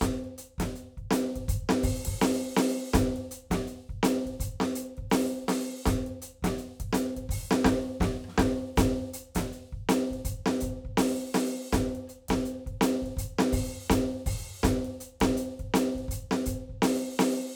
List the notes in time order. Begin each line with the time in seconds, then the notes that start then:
0.01 open hi-hat, kick, snare, hi-hat pedal
0.24 closed hi-hat
0.38 closed hi-hat
0.58 kick, snare, closed hi-hat
0.75 closed hi-hat
0.97 kick, closed hi-hat
1.11 closed hi-hat, snare
1.36 kick, closed hi-hat
1.48 closed hi-hat, kick
1.69 snare
1.83 open hi-hat, kick
2.05 kick, open hi-hat
2.15 kick
2.21 open hi-hat, snare
2.57 open hi-hat, snare
2.92 closed hi-hat, kick, snare, hi-hat pedal
3.16 closed hi-hat
3.31 closed hi-hat
3.50 kick, snare, closed hi-hat
3.67 closed hi-hat
3.89 kick, closed hi-hat
4.03 closed hi-hat, snare
4.25 kick, closed hi-hat
4.40 closed hi-hat, kick
4.60 snare
4.75 closed hi-hat
4.97 kick, closed hi-hat
5.10 open hi-hat, snare, hi-hat pedal
5.43 kick
5.48 open hi-hat, snare
5.86 open hi-hat, kick, snare, hi-hat pedal
6.06 closed hi-hat
6.22 closed hi-hat
6.42 kick, snare, closed hi-hat
6.58 closed hi-hat
6.80 kick, closed hi-hat
6.93 closed hi-hat, snare
7.16 kick, closed hi-hat
7.29 open hi-hat, kick
7.51 snare
7.64 kick, snare
7.95 cross-stick
8.00 kick, snare
8.24 cross-stick
8.28 snare
8.31 snare
8.33 snare
8.38 kick, snare
8.76 closed hi-hat, kick, snare, hi-hat pedal
9.13 closed hi-hat
9.35 closed hi-hat, kick, snare
9.41 snare
9.52 closed hi-hat
9.72 kick
9.89 closed hi-hat, snare
10.11 kick, closed hi-hat
10.25 closed hi-hat, kick
10.46 snare
10.60 closed hi-hat, kick
10.85 kick
10.97 open hi-hat, snare
11.34 open hi-hat, snare
11.72 open hi-hat, kick, snare, hi-hat pedal
11.95 closed hi-hat
12.07 closed hi-hat, cross-stick
12.28 kick, snare, closed hi-hat
12.36 snare
12.45 closed hi-hat
12.66 kick, closed hi-hat
12.81 closed hi-hat, snare
13.02 kick, closed hi-hat
13.17 closed hi-hat, kick
13.39 snare
13.52 open hi-hat, kick
13.86 hi-hat pedal
13.90 closed hi-hat, kick, snare
14.26 open hi-hat, kick
14.63 open hi-hat, kick, snare, hi-hat pedal
14.84 closed hi-hat
15.00 closed hi-hat
15.20 kick, snare, closed hi-hat
15.37 closed hi-hat
15.59 kick, closed hi-hat
15.74 closed hi-hat, snare
15.95 kick, closed hi-hat
16.08 closed hi-hat, kick
16.31 snare
16.46 closed hi-hat, kick
16.69 kick
16.82 open hi-hat, snare, hi-hat pedal
17.19 open hi-hat, snare